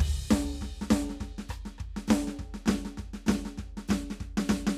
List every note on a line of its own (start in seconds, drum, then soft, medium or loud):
0.01 kick loud
0.01 crash loud
0.31 kick medium
0.31 snare loud
0.31 hi-hat pedal medium
0.54 snare soft
0.62 kick medium
0.62 snare medium
0.82 snare medium
0.90 kick medium
0.90 snare loud
0.90 hi-hat pedal medium
1.10 snare soft
1.21 kick medium
1.21 snare soft
1.39 snare medium
1.49 kick medium
1.49 cross-stick medium
1.49 hi-hat pedal medium
1.66 snare soft
1.79 kick medium
1.79 cross-stick soft
1.97 snare medium
2.08 kick medium
2.08 snare medium
2.08 hi-hat pedal medium
2.11 snare loud
2.28 snare medium
2.40 kick medium
2.40 snare soft
2.55 snare soft
2.67 snare medium
2.67 hi-hat pedal medium
2.68 kick medium
2.68 snare loud
2.86 snare medium
2.98 kick medium
2.98 snare soft
3.14 snare medium
3.27 kick medium
3.27 snare medium
3.27 hi-hat pedal medium
3.29 snare loud
3.46 snare medium
3.58 kick medium
3.58 snare soft
3.78 snare medium
3.89 kick medium
3.89 snare medium
3.89 hi-hat pedal medium
3.91 snare loud
4.11 snare medium
4.21 kick medium
4.21 snare soft
4.38 snare loud
4.49 kick medium
4.49 snare loud
4.49 hi-hat pedal medium
4.67 snare loud